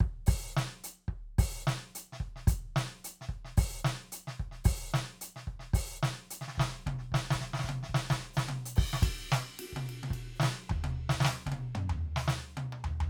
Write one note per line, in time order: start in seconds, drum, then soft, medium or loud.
0.01 kick loud
0.27 open hi-hat loud
0.27 kick loud
0.52 hi-hat pedal medium
0.57 snare loud
0.84 closed hi-hat loud
1.09 kick medium
1.39 open hi-hat loud
1.39 kick loud
1.63 hi-hat pedal medium
1.67 snare loud
1.96 closed hi-hat loud
2.13 snare medium
2.21 kick medium
2.36 snare soft
2.48 closed hi-hat loud
2.48 kick loud
2.76 snare loud
3.05 closed hi-hat loud
3.22 snare medium
3.29 kick medium
3.45 snare medium
3.58 open hi-hat loud
3.58 kick loud
3.80 hi-hat pedal medium
3.85 snare loud
4.13 closed hi-hat loud
4.28 snare medium
4.40 kick medium
4.52 snare soft
4.65 open hi-hat loud
4.65 kick loud
4.91 snare loud
4.91 hi-hat pedal medium
5.22 closed hi-hat loud
5.36 snare medium
5.48 kick medium
5.60 snare medium
5.74 open hi-hat loud
5.74 kick loud
5.98 hi-hat pedal medium
6.03 snare loud
6.31 closed hi-hat loud
6.42 snare medium
6.48 snare medium
6.55 kick medium
6.55 snare soft
6.60 snare loud
6.72 snare soft
6.80 snare soft
6.87 kick medium
6.87 high tom loud
6.99 snare soft
7.12 kick medium
7.12 snare loud
7.31 kick soft
7.31 snare loud
7.54 snare medium
7.60 snare medium
7.65 kick medium
7.65 snare medium
7.69 high tom loud
7.83 snare medium
7.90 kick medium
7.95 snare loud
8.09 kick soft
8.09 snare loud
8.09 hi-hat pedal medium
8.21 snare soft
8.34 kick soft
8.34 snare loud
8.34 hi-hat pedal medium
8.49 high tom loud
8.66 closed hi-hat loud
8.76 kick loud
8.76 crash loud
8.94 snare loud
9.03 kick loud
9.03 ride bell loud
9.30 snare loud
9.30 hi-hat pedal medium
9.60 ride loud
9.73 kick soft
9.73 high tom loud
9.90 ride medium
10.04 high tom loud
10.11 kick medium
10.11 ride bell medium
10.36 hi-hat pedal soft
10.40 snare loud
10.44 snare loud
10.70 kick loud
10.70 floor tom loud
10.84 cross-stick soft
10.84 high tom loud
11.10 snare loud
11.15 kick soft
11.21 snare loud
11.25 snare loud
11.47 kick medium
11.47 high tom loud
11.52 high tom loud
11.75 mid tom loud
11.90 floor tom loud
12.17 snare medium
12.28 snare loud
12.57 high tom loud
12.73 high tom medium
12.85 floor tom loud
13.01 floor tom loud